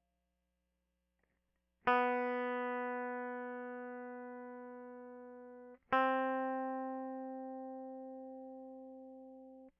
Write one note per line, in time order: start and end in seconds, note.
1.88 5.80 B3
5.93 9.72 C4